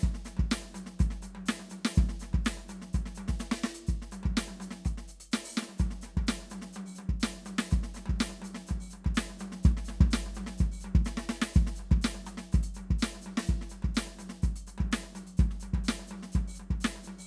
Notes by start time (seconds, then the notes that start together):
0.01 kick, hi-hat pedal, high tom
0.15 snare
0.25 snare, hi-hat pedal, high tom
0.37 kick, high tom
0.51 snare, hi-hat pedal
0.62 high tom
0.75 hi-hat pedal, high tom
0.86 snare
0.99 kick, hi-hat pedal, high tom
1.11 snare
1.22 hi-hat pedal, high tom
1.35 high tom
1.42 kick
1.46 snare, hi-hat pedal
1.60 high tom
1.70 hi-hat pedal, high tom
1.85 snare
1.95 kick, hi-hat pedal, high tom
2.09 snare
2.20 snare, hi-hat pedal, high tom
2.33 kick, high tom
2.45 snare, hi-hat pedal
2.58 high tom
2.69 hi-hat pedal, high tom
2.82 snare
2.93 kick, hi-hat pedal, high tom
3.06 snare
3.15 hi-hat pedal, high tom
3.28 kick, snare
3.40 snare, hi-hat pedal
3.52 snare
3.58 kick
3.63 snare, hi-hat pedal
3.75 open hi-hat
3.87 kick, hi-hat pedal
4.02 snare
4.12 hi-hat pedal, high tom
4.23 kick, high tom
4.37 snare, hi-hat pedal
4.48 high tom
4.61 hi-hat pedal, high tom
4.71 snare
4.85 kick, hi-hat pedal, high tom
4.98 snare
5.08 hi-hat pedal
5.20 open hi-hat
5.32 snare, hi-hat pedal
5.45 open hi-hat
5.54 snare, hi-hat pedal
5.63 snare
5.69 high tom
5.79 kick, hi-hat pedal, high tom
5.91 snare
6.02 snare, hi-hat pedal
6.07 high tom
6.17 kick, high tom
6.27 snare, hi-hat pedal
6.41 high tom
6.50 hi-hat pedal, high tom
6.62 snare
6.73 hi-hat pedal, high tom
6.86 open hi-hat
6.95 hi-hat pedal, high tom
7.09 kick
7.20 snare, hi-hat pedal
7.25 high tom
7.46 hi-hat pedal, high tom
7.59 snare
7.71 kick, hi-hat pedal, high tom
7.84 snare
7.94 snare, hi-hat pedal, high tom
8.06 kick, high tom
8.20 snare, hi-hat pedal
8.30 high tom
8.42 hi-hat pedal, high tom
8.55 snare
8.67 hi-hat pedal, high tom
8.71 kick
8.80 open hi-hat
8.90 hi-hat pedal, high tom
9.05 kick, high tom
9.15 snare, hi-hat pedal
9.30 high tom
9.39 hi-hat pedal, high tom
9.52 snare
9.63 kick, hi-hat pedal, high tom
9.77 snare
9.85 snare, hi-hat pedal
9.90 high tom
10.01 kick, high tom
10.11 snare, hi-hat pedal
10.26 high tom
10.35 hi-hat pedal, high tom
10.47 snare
10.58 kick, hi-hat pedal
10.63 high tom
10.72 open hi-hat
10.81 hi-hat pedal
10.85 high tom
10.95 kick
11.05 snare, hi-hat pedal
11.18 snare
11.29 snare, hi-hat pedal
11.42 snare
11.54 kick, hi-hat pedal, high tom
11.67 snare
11.76 hi-hat pedal
11.80 high tom
11.91 kick, high tom
12.02 snare, hi-hat pedal
12.15 high tom
12.26 hi-hat pedal, high tom
12.38 snare
12.52 kick, hi-hat pedal, high tom
12.63 open hi-hat
12.75 hi-hat pedal, high tom
12.91 kick
12.99 snare, hi-hat pedal
13.15 high tom
13.22 hi-hat pedal
13.26 high tom
13.38 snare
13.47 kick, hi-hat pedal, high tom
13.62 snare
13.70 hi-hat pedal, high tom
13.83 kick, high tom
13.95 snare, hi-hat pedal
14.07 high tom
14.19 hi-hat pedal, high tom
14.30 snare
14.43 kick, hi-hat pedal, high tom
14.56 open hi-hat
14.67 hi-hat pedal, high tom
14.78 kick, high tom
14.92 snare, hi-hat pedal
15.04 high tom
15.15 hi-hat pedal, high tom
15.27 open hi-hat
15.37 kick, hi-hat pedal, high tom
15.51 snare
15.60 hi-hat pedal, high tom
15.74 kick, high tom
15.84 hi-hat pedal
15.89 snare
16.00 high tom
16.08 hi-hat pedal, high tom
16.23 snare
16.32 kick, hi-hat pedal, high tom
16.48 open hi-hat
16.55 hi-hat pedal
16.60 high tom
16.71 kick, high tom
16.81 hi-hat pedal
16.85 snare
16.96 high tom
17.04 hi-hat pedal
17.08 high tom
17.19 open hi-hat